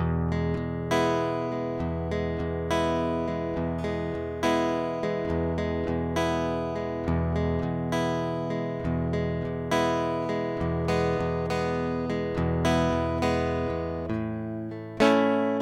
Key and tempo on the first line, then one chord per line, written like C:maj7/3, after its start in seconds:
E major, 68 BPM
0.00 E:maj
14.12 A:maj/5